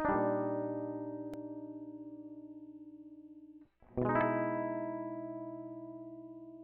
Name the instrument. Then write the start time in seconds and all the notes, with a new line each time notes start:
electric guitar
0.00 D#4
0.05 D4
0.09 G3
0.16 A#2
3.99 B2
4.05 G#3 D#4
4.15 E4